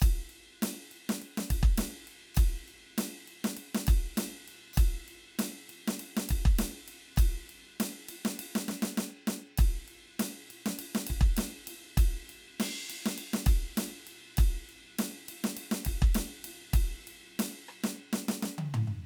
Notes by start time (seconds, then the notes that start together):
0.00 kick, hi-hat pedal, ride
0.29 ride
0.62 snare, ride
0.91 ride
1.09 snare
1.22 ride
1.37 snare
1.50 kick, ride
1.63 kick
1.78 snare, ride
2.07 ride
2.35 kick, hi-hat pedal, ride
2.68 ride
2.98 snare, ride
3.27 ride
3.44 snare
3.57 ride
3.75 snare
3.87 kick, ride
4.17 snare, ride
4.48 ride
4.73 hi-hat pedal
4.77 kick, ride
5.08 ride
5.39 snare, ride
5.69 ride
5.88 snare
5.99 ride
6.17 snare
6.29 kick, ride
6.45 kick
6.58 snare, ride
6.88 ride
7.16 kick, hi-hat pedal, ride
7.49 ride
7.80 snare, ride
8.09 ride
8.25 snare
8.39 ride
8.55 snare
8.68 snare
8.82 snare
8.97 snare
9.27 snare
9.58 kick, ride
9.88 ride
10.19 snare, ride
10.50 ride
10.66 snare
10.79 ride
10.95 snare
11.07 kick, ride
11.21 kick
11.37 snare, ride
11.67 ride
11.97 kick, ride
12.29 ride
12.60 snare, ride
12.90 ride
13.06 snare
13.18 ride
13.33 snare
13.46 kick, ride
13.77 snare, ride
14.07 ride
14.37 kick, ride
14.69 ride
14.98 snare, ride
15.28 ride
15.44 snare
15.57 ride
15.71 snare
15.85 kick, ride
16.02 kick
16.14 snare, ride
16.44 ride
16.73 kick, ride
17.07 ride
17.39 snare, ride
17.68 cross-stick
17.84 snare
18.13 snare
18.28 snare
18.42 snare
18.58 high tom
18.74 mid tom
18.87 mid tom